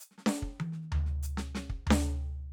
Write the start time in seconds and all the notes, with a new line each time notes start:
0.00 hi-hat pedal
0.11 snare
0.18 snare
0.26 snare
0.42 kick
0.60 closed hi-hat, high tom
0.72 snare
0.81 snare
0.92 floor tom
1.06 snare
1.23 hi-hat pedal
1.37 snare
1.55 snare
1.69 kick
1.87 snare, floor tom